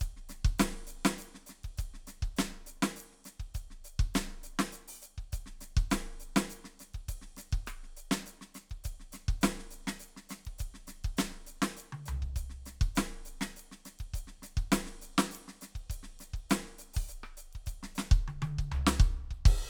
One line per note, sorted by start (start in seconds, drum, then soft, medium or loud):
0.01 kick medium
0.01 hi-hat pedal medium
0.01 ride soft
0.17 snare soft
0.30 snare soft
0.30 hi-hat pedal medium
0.30 ride soft
0.45 kick loud
0.45 ride soft
0.59 snare loud
0.59 hi-hat pedal medium
0.59 ride medium
0.71 snare soft
0.75 snare soft
0.88 hi-hat pedal medium
0.88 ride soft
1.06 snare loud
1.19 hi-hat pedal medium
1.23 ride soft
1.35 snare soft
1.47 snare soft
1.47 hi-hat pedal medium
1.47 ride soft
1.64 kick soft
1.64 ride soft
1.78 kick medium
1.78 hi-hat pedal medium
1.78 ride soft
1.94 snare soft
2.08 snare soft
2.08 hi-hat pedal medium
2.08 ride soft
2.23 kick medium
2.23 ride soft
2.37 snare loud
2.37 hi-hat pedal medium
2.51 snare soft
2.67 hi-hat pedal medium
2.67 ride soft
2.83 snare loud
2.97 hi-hat pedal medium
3.01 ride medium
3.12 snare soft
3.25 snare soft
3.25 hi-hat pedal medium
3.25 ride soft
3.40 kick soft
3.40 ride soft
3.55 kick medium
3.55 hi-hat pedal medium
3.55 ride soft
3.71 snare soft
3.85 hi-hat pedal medium
3.85 ride soft
4.00 kick medium
4.00 ride soft
4.15 snare loud
4.15 hi-hat pedal medium
4.15 ride soft
4.29 snare soft
4.44 hi-hat pedal medium
4.60 snare loud
4.73 hi-hat pedal medium
4.88 open hi-hat medium
5.03 hi-hat pedal medium
5.03 ride soft
5.18 kick soft
5.33 kick medium
5.33 hi-hat pedal medium
5.33 ride soft
5.47 snare soft
5.61 snare soft
5.61 hi-hat pedal medium
5.61 ride soft
5.77 kick loud
5.77 ride soft
5.91 snare loud
5.91 hi-hat pedal medium
5.91 ride medium
6.02 cross-stick soft
6.07 cross-stick soft
6.20 hi-hat pedal medium
6.37 snare loud
6.50 hi-hat pedal medium
6.50 ride soft
6.65 snare soft
6.80 snare soft
6.80 hi-hat pedal medium
6.80 ride soft
6.95 kick soft
6.95 ride soft
7.09 kick medium
7.09 hi-hat pedal medium
7.09 ride medium
7.22 snare soft
7.37 snare soft
7.37 hi-hat pedal medium
7.37 ride soft
7.53 kick medium
7.53 ride soft
7.67 cross-stick medium
7.67 hi-hat pedal medium
7.67 ride soft
7.84 snare soft
7.97 hi-hat pedal medium
7.97 ride soft
8.12 snare loud
8.27 hi-hat pedal medium
8.27 ride soft
8.42 snare soft
8.55 snare soft
8.55 hi-hat pedal medium
8.55 ride soft
8.71 kick soft
8.71 ride soft
8.85 kick medium
8.85 hi-hat pedal medium
8.85 ride soft
9.00 snare soft
9.13 snare soft
9.13 hi-hat pedal medium
9.13 ride soft
9.29 kick medium
9.29 ride soft
9.42 snare loud
9.42 hi-hat pedal medium
9.42 ride medium
9.59 snare soft
9.71 hi-hat pedal medium
9.71 ride soft
9.88 snare medium
10.00 hi-hat pedal medium
10.05 ride soft
10.17 snare soft
10.30 snare medium
10.30 hi-hat pedal medium
10.30 ride soft
10.46 kick soft
10.46 ride soft
10.59 kick medium
10.59 hi-hat pedal medium
10.59 ride soft
10.75 snare soft
10.88 snare soft
10.88 hi-hat pedal medium
10.88 ride soft
11.05 kick medium
11.05 ride soft
11.18 snare loud
11.18 hi-hat pedal medium
11.18 ride medium
11.32 snare soft
11.47 hi-hat pedal medium
11.47 ride soft
11.63 snare loud
11.77 hi-hat pedal medium
11.77 ride soft
11.93 high tom medium
12.06 floor tom loud
12.06 hi-hat pedal medium
12.23 kick soft
12.37 kick medium
12.37 hi-hat pedal medium
12.37 ride soft
12.50 snare soft
12.66 snare soft
12.66 hi-hat pedal medium
12.66 ride soft
12.82 kick medium
12.82 ride soft
12.96 snare loud
12.96 hi-hat pedal medium
12.96 ride medium
13.13 snare soft
13.26 hi-hat pedal medium
13.26 ride soft
13.42 snare medium
13.42 ride soft
13.57 hi-hat pedal medium
13.57 ride soft
13.72 snare soft
13.86 snare soft
13.86 hi-hat pedal medium
13.86 ride soft
14.00 kick soft
14.00 ride soft
14.14 kick medium
14.14 hi-hat pedal medium
14.14 ride soft
14.28 snare soft
14.43 snare soft
14.43 hi-hat pedal medium
14.43 ride soft
14.58 kick medium
14.58 ride soft
14.73 snare loud
14.73 hi-hat pedal medium
14.73 ride medium
14.87 snare soft
15.02 hi-hat pedal medium
15.02 ride soft
15.19 snare loud
15.32 hi-hat pedal medium
15.36 ride medium
15.49 snare soft
15.62 snare soft
15.62 hi-hat pedal medium
15.62 ride soft
15.76 kick soft
15.76 ride soft
15.90 kick medium
15.90 hi-hat pedal medium
15.90 ride medium
16.04 snare soft
16.20 snare soft
16.20 hi-hat pedal medium
16.20 ride soft
16.34 kick medium
16.34 ride soft
16.50 snare loud
16.50 hi-hat pedal medium
16.50 ride medium
16.66 snare soft
16.79 hi-hat pedal medium
16.94 open hi-hat medium
16.94 kick medium
17.09 hi-hat pedal medium
17.09 ride soft
17.24 cross-stick medium
17.38 snare soft
17.38 hi-hat pedal medium
17.38 ride soft
17.54 kick soft
17.54 ride soft
17.67 kick medium
17.67 hi-hat pedal medium
17.67 ride soft
17.84 snare medium
17.96 snare loud
17.96 hi-hat pedal medium
18.12 kick loud
18.29 high tom medium
18.43 high tom loud
18.59 kick medium
18.72 floor tom loud
18.87 snare loud
19.00 kick loud
19.31 kick soft
19.46 kick loud
19.46 crash medium